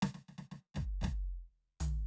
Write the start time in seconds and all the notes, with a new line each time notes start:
0.03 snare
0.15 snare
0.29 snare
0.38 snare
0.52 snare
0.75 kick, snare
1.02 kick, snare
1.04 snare
1.80 open hi-hat, floor tom